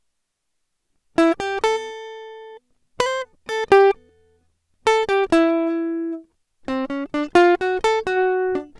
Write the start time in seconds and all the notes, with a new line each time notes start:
1.19 E4
1.41 G4
1.65 A4
3.01 B4
3.12 C5
3.50 A4
3.73 G4
4.88 A4
5.10 G4
5.33 E4
6.69 C4
6.91 C#4
7.15 D4
7.36 F4
7.62 F#4
7.85 A4
8.08 F#4